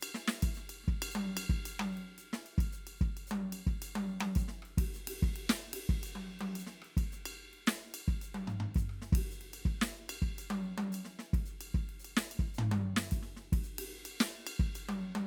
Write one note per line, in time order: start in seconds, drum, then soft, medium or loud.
0.01 hi-hat pedal medium
0.01 ride bell loud
0.15 snare medium
0.28 snare loud
0.43 kick medium
0.43 ride bell medium
0.55 snare soft
0.55 hi-hat pedal medium
0.70 ride bell medium
0.84 snare soft
0.88 kick medium
1.02 ride bell loud
1.11 hi-hat pedal medium
1.15 high tom loud
1.37 ride bell loud
1.50 kick medium
1.66 hi-hat pedal medium
1.66 ride bell medium
1.80 high tom loud
1.92 hi-hat pedal soft
1.97 ride soft
2.18 hi-hat pedal medium
2.18 ride soft
2.33 snare medium
2.42 hi-hat pedal soft
2.42 ride bell soft
2.58 kick medium
2.58 ride bell medium
2.73 hi-hat pedal medium
2.87 ride bell medium
2.98 kick medium
2.98 hi-hat pedal soft
3.17 ride bell soft
3.27 hi-hat pedal medium
3.31 high tom loud
3.53 ride bell medium
3.67 kick medium
3.82 hi-hat pedal medium
3.82 ride bell medium
3.96 high tom loud
4.09 hi-hat pedal soft
4.20 high tom loud
4.20 ride soft
4.36 kick medium
4.36 hi-hat pedal medium
4.36 ride bell medium
4.48 snare soft
4.63 cross-stick soft
4.63 ride soft
4.78 kick medium
4.78 ride loud
4.94 snare soft
4.94 hi-hat pedal medium
5.08 ride loud
5.19 kick medium
5.19 hi-hat pedal soft
5.36 ride medium
5.50 snare loud
5.50 hi-hat pedal medium
5.74 hi-hat pedal soft
5.74 ride loud
5.89 kick medium
6.03 hi-hat pedal medium
6.03 ride bell medium
6.16 high tom medium
6.30 hi-hat pedal soft
6.40 high tom loud
6.40 ride soft
6.56 hi-hat pedal medium
6.56 ride bell medium
6.67 snare soft
6.82 cross-stick medium
6.82 ride soft
6.97 kick medium
6.97 ride bell medium
7.12 snare soft
7.12 hi-hat pedal medium
7.26 ride bell loud
7.36 hi-hat pedal soft
7.53 ride soft
7.67 snare loud
7.67 hi-hat pedal medium
7.94 ride bell medium
8.08 kick medium
8.22 hi-hat pedal medium
8.22 ride bell soft
8.35 high tom loud
8.48 floor tom loud
8.48 hi-hat pedal soft
8.60 floor tom loud
8.75 kick medium
8.75 hi-hat pedal medium
8.75 ride soft
8.90 cross-stick soft
9.02 snare soft
9.02 hi-hat pedal soft
9.13 kick medium
9.13 ride loud
9.31 hi-hat pedal medium
9.41 ride medium
9.54 ride bell medium
9.66 kick medium
9.82 snare loud
9.82 hi-hat pedal medium
10.09 hi-hat pedal soft
10.09 ride bell loud
10.22 kick medium
10.39 hi-hat pedal medium
10.39 ride bell medium
10.51 high tom loud
10.63 hi-hat pedal soft
10.78 high tom loud
10.92 hi-hat pedal medium
10.92 ride bell medium
11.05 snare soft
11.19 snare medium
11.19 ride soft
11.34 kick medium
11.34 ride medium
11.46 hi-hat pedal medium
11.50 snare soft
11.61 ride bell medium
11.70 hi-hat pedal soft
11.75 kick medium
11.89 ride soft
12.00 hi-hat pedal medium
12.05 ride bell medium
12.17 snare loud
12.32 ride bell medium
12.39 kick medium
12.54 hi-hat pedal medium
12.59 floor tom loud
12.72 high tom loud
12.97 snare loud
13.11 kick medium
13.11 hi-hat pedal medium
13.11 ride medium
13.23 snare soft
13.37 snare soft
13.53 kick medium
13.53 ride medium
13.64 snare soft
13.64 hi-hat pedal medium
13.79 ride loud
14.06 ride bell medium
14.20 snare loud
14.20 hi-hat pedal medium
14.47 ride bell loud
14.60 kick medium
14.75 hi-hat pedal medium
14.75 ride bell medium
14.89 high tom loud
15.00 hi-hat pedal soft
15.15 high tom loud